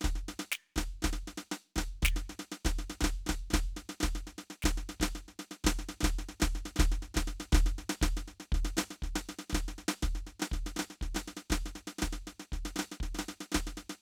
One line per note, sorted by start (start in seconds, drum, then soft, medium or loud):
0.01 kick medium
0.01 snare soft
0.04 snare medium
0.15 snare soft
0.28 snare soft
0.39 snare medium
0.52 snare medium
0.76 kick soft
0.76 snare soft
0.78 snare medium
1.02 kick medium
1.02 snare soft
1.04 snare medium
1.13 snare soft
1.27 snare soft
1.52 snare medium
1.76 kick soft
1.76 snare soft
1.78 snare medium
2.02 kick medium
2.02 snare soft
2.05 snare medium
2.16 snare soft
2.29 snare soft
2.39 snare soft
2.52 snare soft
2.65 kick medium
2.65 snare soft
2.65 snare medium
2.79 snare soft
2.90 snare soft
3.01 kick medium
3.01 snare medium
3.04 snare medium
3.26 kick soft
3.26 snare soft
3.29 snare medium
3.50 kick medium
3.50 snare soft
3.54 snare medium
3.77 snare soft
3.89 snare soft
4.00 snare medium
4.03 kick medium
4.03 snare medium
4.15 snare soft
4.27 snare soft
4.38 snare soft
4.50 snare soft
4.62 kick medium
4.62 snare soft
4.66 snare loud
4.78 snare soft
4.89 snare soft
5.00 kick soft
5.00 snare medium
5.03 snare medium
5.15 snare soft
5.28 snare soft
5.39 snare soft
5.51 snare soft
5.64 kick medium
5.64 snare soft
5.67 snare loud
5.79 snare soft
5.89 snare soft
6.01 kick medium
6.01 snare medium
6.04 snare medium
6.19 snare soft
6.29 snare soft
6.40 snare soft
6.42 kick medium
6.42 snare medium
6.55 snare soft
6.66 snare soft
6.76 kick medium
6.76 snare medium
6.80 snare medium
6.92 snare soft
7.02 snare soft
7.14 kick medium
7.14 snare soft
7.17 snare medium
7.27 snare soft
7.40 snare soft
7.52 kick medium
7.52 snare medium
7.55 snare medium
7.66 snare soft
7.78 snare soft
7.89 snare medium
8.02 kick medium
8.02 snare medium
8.17 snare soft
8.28 snare soft
8.40 snare soft
8.52 kick medium
8.52 snare soft
8.65 snare medium
8.77 snare medium
8.77 snare loud
8.91 snare soft
9.02 kick soft
9.02 snare soft
9.16 snare medium
9.29 snare soft
9.50 kick medium
9.50 snare soft
9.55 snare medium
9.68 snare soft
10.03 kick medium
10.03 snare medium
10.15 snare soft
10.27 snare soft
10.40 snare soft
10.42 snare medium
10.52 kick medium
10.52 snare soft
10.66 snare soft
10.76 snare medium
10.79 snare medium
10.90 snare soft
11.01 kick soft
11.01 snare soft
11.15 snare soft
11.15 snare medium
11.28 snare soft
11.37 snare soft
11.50 kick medium
11.50 snare soft
11.52 snare medium
11.66 snare soft
11.75 snare soft
11.87 snare soft
11.99 snare soft
12.02 kick soft
12.02 snare medium
12.13 snare soft
12.27 snare soft
12.40 snare soft
12.52 kick soft
12.52 snare soft
12.65 snare medium
12.76 snare medium
12.79 snare medium
12.92 snare soft
13.00 kick soft
13.00 snare soft
13.15 snare soft
13.19 snare medium
13.29 snare soft
13.41 snare soft
13.52 snare medium
13.55 kick soft
13.55 snare medium
13.67 snare soft
13.77 snare soft
13.90 snare soft